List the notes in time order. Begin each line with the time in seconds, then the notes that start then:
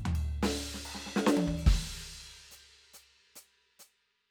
0.05 floor tom
0.15 ride bell
0.43 snare, crash
0.74 snare
0.85 crash
0.95 snare
1.06 snare
1.16 snare
1.27 snare, hi-hat pedal
1.37 high tom
1.47 kick, floor tom
1.57 open hi-hat
1.66 kick, crash
2.51 hi-hat pedal
2.94 hi-hat pedal
3.36 hi-hat pedal
3.79 hi-hat pedal